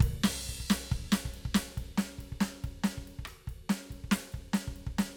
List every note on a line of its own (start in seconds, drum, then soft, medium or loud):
0.01 kick loud
0.01 ride loud
0.24 snare loud
0.24 crash loud
0.49 kick soft
0.60 kick soft
0.70 snare loud
0.70 ride loud
0.84 snare soft
0.92 kick medium
0.92 ride soft
1.12 snare loud
1.12 ride medium
1.25 kick medium
1.25 snare soft
1.34 ride medium
1.45 kick medium
1.55 snare loud
1.55 ride medium
1.77 kick medium
1.77 snare soft
1.77 ride medium
1.98 snare loud
1.98 ride medium
2.19 kick soft
2.19 snare soft
2.19 ride medium
2.32 kick soft
2.41 snare loud
2.41 ride medium
2.62 kick medium
2.62 snare soft
2.62 ride soft
2.84 snare loud
2.84 ride medium
2.98 kick soft
2.98 snare soft
3.08 ride soft
3.19 kick soft
3.25 cross-stick medium
3.25 ride medium
3.47 kick soft
3.47 snare soft
3.47 ride soft
3.70 snare loud
3.70 ride medium
3.84 snare soft
3.91 kick soft
3.91 ride soft
4.04 kick soft
4.12 snare loud
4.12 ride medium
4.27 snare soft
4.33 kick soft
4.33 ride soft
4.54 snare loud
4.54 ride medium
4.68 kick medium
4.68 snare soft
4.76 ride soft
4.87 kick medium
4.99 snare loud
4.99 ride medium